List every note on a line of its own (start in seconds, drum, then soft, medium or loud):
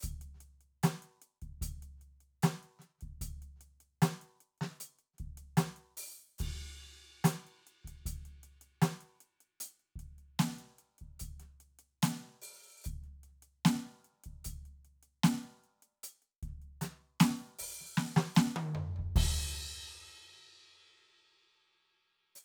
0.01 closed hi-hat medium
0.01 kick medium
0.01 hi-hat pedal medium
0.22 closed hi-hat soft
0.35 snare soft
0.41 closed hi-hat soft
0.61 closed hi-hat soft
0.84 closed hi-hat medium
0.84 snare loud
1.03 closed hi-hat soft
1.22 closed hi-hat soft
1.42 kick soft
1.42 closed hi-hat soft
1.62 closed hi-hat medium
1.62 kick medium
1.83 closed hi-hat soft
1.98 snare soft
2.02 closed hi-hat soft
2.21 closed hi-hat soft
2.43 closed hi-hat medium
2.43 snare loud
2.64 closed hi-hat soft
2.80 snare soft
2.80 closed hi-hat soft
2.99 snare soft
2.99 closed hi-hat soft
3.03 kick soft
3.22 closed hi-hat medium
3.22 kick soft
3.43 closed hi-hat soft
3.57 snare soft
3.62 closed hi-hat soft
3.81 closed hi-hat soft
4.03 closed hi-hat medium
4.03 snare loud
4.22 closed hi-hat soft
4.41 closed hi-hat soft
4.58 snare medium
4.58 closed hi-hat soft
4.81 closed hi-hat medium
4.99 closed hi-hat soft
5.14 snare soft
5.19 kick soft
5.19 closed hi-hat soft
5.38 closed hi-hat soft
5.58 closed hi-hat medium
5.58 snare loud
5.77 closed hi-hat soft
5.98 open hi-hat loud
6.39 kick medium
6.39 hi-hat pedal medium
6.39 crash medium
7.25 closed hi-hat loud
7.25 snare loud
7.47 closed hi-hat soft
7.68 closed hi-hat soft
7.85 kick soft
7.85 snare soft
7.85 closed hi-hat soft
8.06 closed hi-hat medium
8.06 kick medium
8.26 closed hi-hat soft
8.44 closed hi-hat soft
8.62 closed hi-hat soft
8.82 closed hi-hat medium
8.82 snare loud
9.01 closed hi-hat soft
9.21 closed hi-hat soft
9.41 closed hi-hat soft
9.61 closed hi-hat medium
9.80 closed hi-hat soft
9.96 kick soft
9.96 closed hi-hat soft
10.19 closed hi-hat soft
10.40 closed hi-hat medium
10.40 snare loud
10.59 closed hi-hat soft
10.79 closed hi-hat soft
10.99 kick soft
10.99 closed hi-hat soft
11.20 closed hi-hat medium
11.20 kick soft
11.40 snare soft
11.40 closed hi-hat soft
11.61 closed hi-hat soft
11.79 closed hi-hat soft
12.03 closed hi-hat medium
12.03 snare loud
12.23 closed hi-hat soft
12.42 open hi-hat medium
12.85 open hi-hat medium
12.85 kick medium
12.85 hi-hat pedal medium
13.03 snare soft
13.03 closed hi-hat soft
13.24 snare soft
13.24 closed hi-hat soft
13.43 closed hi-hat soft
13.66 closed hi-hat medium
13.66 snare loud
14.05 closed hi-hat soft
14.13 snare soft
14.24 kick soft
14.24 closed hi-hat soft
14.45 closed hi-hat medium
14.45 kick soft
14.66 closed hi-hat soft
14.85 closed hi-hat soft
15.03 closed hi-hat soft
15.24 closed hi-hat medium
15.24 snare loud
15.44 closed hi-hat soft
15.64 closed hi-hat soft
15.83 closed hi-hat soft
16.04 closed hi-hat medium
16.23 closed hi-hat soft
16.43 kick soft
16.43 snare soft
16.43 closed hi-hat soft
16.62 closed hi-hat soft
16.82 closed hi-hat medium
16.82 snare medium
17.21 closed hi-hat medium
17.21 snare loud
17.38 open hi-hat soft
17.59 open hi-hat loud
17.59 kick soft
17.81 snare soft
17.87 snare soft
17.98 snare medium
18.17 snare loud
18.36 snare loud
18.36 hi-hat pedal medium
18.57 high tom loud
18.76 floor tom medium
18.97 kick soft
18.97 floor tom soft
19.17 kick loud
19.17 crash loud
22.36 hi-hat pedal medium